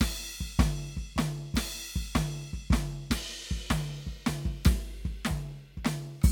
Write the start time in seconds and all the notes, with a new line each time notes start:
0.00 kick, snare, crash
0.40 kick
0.59 kick, snare, mid tom
0.97 kick
1.16 kick, snare, mid tom
1.54 kick, snare, crash
1.96 kick
2.15 kick, snare, mid tom
2.53 kick
2.70 kick, snare, mid tom
3.11 kick, snare, crash
3.51 kick
3.70 kick, snare, mid tom
4.07 kick
4.26 kick, snare, mid tom
4.45 kick
4.65 kick, snare, ride
5.05 kick
5.25 snare, mid tom
5.31 kick
5.77 kick
5.85 snare, mid tom
5.97 kick
6.18 kick, cross-stick
6.23 open hi-hat, kick, cross-stick